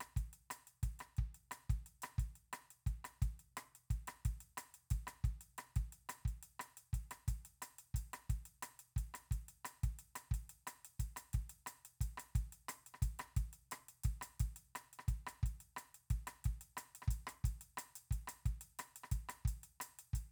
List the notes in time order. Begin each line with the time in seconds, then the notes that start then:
0.01 cross-stick, closed hi-hat
0.17 kick, closed hi-hat
0.33 closed hi-hat
0.51 cross-stick, closed hi-hat
0.68 closed hi-hat
0.83 kick, closed hi-hat
1.00 cross-stick, closed hi-hat
1.17 kick, closed hi-hat
1.35 closed hi-hat
1.52 cross-stick, closed hi-hat
1.70 kick, closed hi-hat
1.87 closed hi-hat
2.03 cross-stick, closed hi-hat
2.19 kick, closed hi-hat
2.36 closed hi-hat
2.53 cross-stick, closed hi-hat
2.71 closed hi-hat
2.87 kick, closed hi-hat
3.05 cross-stick, closed hi-hat
3.22 kick, closed hi-hat
3.40 closed hi-hat
3.57 cross-stick, closed hi-hat
3.76 closed hi-hat
3.91 kick, closed hi-hat
4.08 cross-stick, closed hi-hat
4.26 kick, closed hi-hat
4.41 closed hi-hat
4.58 cross-stick, closed hi-hat
4.75 closed hi-hat
4.91 kick, closed hi-hat
5.08 cross-stick, closed hi-hat
5.24 kick, closed hi-hat
5.41 closed hi-hat
5.58 cross-stick, closed hi-hat
5.76 kick, closed hi-hat
5.93 closed hi-hat
6.10 cross-stick, closed hi-hat
6.26 kick, closed hi-hat
6.43 closed hi-hat
6.60 cross-stick, closed hi-hat
6.78 closed hi-hat
6.94 kick, closed hi-hat
7.11 cross-stick, closed hi-hat
7.28 kick, closed hi-hat
7.45 closed hi-hat
7.62 cross-stick, closed hi-hat
7.79 closed hi-hat
7.95 kick, closed hi-hat
8.14 cross-stick, closed hi-hat
8.30 kick, closed hi-hat
8.46 closed hi-hat
8.63 cross-stick, closed hi-hat
8.80 closed hi-hat
8.97 kick, closed hi-hat
9.15 cross-stick, closed hi-hat
9.31 kick, closed hi-hat
9.49 closed hi-hat
9.65 cross-stick, closed hi-hat
9.84 kick, closed hi-hat
9.99 closed hi-hat
10.16 cross-stick, closed hi-hat
10.32 kick, closed hi-hat
10.50 closed hi-hat
10.67 cross-stick, closed hi-hat
10.85 closed hi-hat
11.00 kick, closed hi-hat
11.17 cross-stick, closed hi-hat
11.34 kick, closed hi-hat
11.50 closed hi-hat
11.67 cross-stick, closed hi-hat
11.85 closed hi-hat
12.01 kick, closed hi-hat
12.18 cross-stick, closed hi-hat
12.36 kick, closed hi-hat
12.53 closed hi-hat
12.69 cross-stick, closed hi-hat
12.87 closed hi-hat
12.94 cross-stick
13.03 kick, closed hi-hat
13.19 cross-stick, closed hi-hat
13.37 kick, closed hi-hat
13.53 closed hi-hat
13.72 cross-stick, closed hi-hat
13.89 closed hi-hat
14.04 kick, closed hi-hat
14.22 cross-stick, closed hi-hat
14.40 kick, closed hi-hat
14.57 closed hi-hat
14.76 cross-stick, closed hi-hat
14.94 closed hi-hat
14.99 cross-stick
15.08 kick, closed hi-hat
15.27 cross-stick, closed hi-hat
15.43 kick, closed hi-hat
15.61 closed hi-hat
15.77 cross-stick, closed hi-hat
15.95 closed hi-hat
16.11 kick, closed hi-hat
16.28 cross-stick, closed hi-hat
16.45 kick, closed hi-hat
16.62 closed hi-hat
16.77 cross-stick, closed hi-hat
16.96 closed hi-hat
17.03 cross-stick
17.08 kick, closed hi-hat
17.27 cross-stick, closed hi-hat
17.45 kick, closed hi-hat
17.62 closed hi-hat
17.78 cross-stick, closed hi-hat
17.96 closed hi-hat
18.11 kick, closed hi-hat
18.28 cross-stick, closed hi-hat
18.46 kick, closed hi-hat
18.62 closed hi-hat
18.79 cross-stick, closed hi-hat
18.96 closed hi-hat
19.04 cross-stick
19.12 kick, closed hi-hat
19.29 cross-stick, closed hi-hat
19.46 kick, closed hi-hat
19.64 closed hi-hat
19.81 cross-stick, closed hi-hat
19.99 closed hi-hat
20.14 kick, closed hi-hat